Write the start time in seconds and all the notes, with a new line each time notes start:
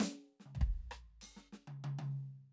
0.00 snare
0.40 snare
0.46 high tom
0.55 floor tom
0.61 kick
0.91 cross-stick
1.21 snare, hi-hat pedal
1.37 snare
1.53 snare
1.67 high tom
1.84 high tom
1.99 closed hi-hat, high tom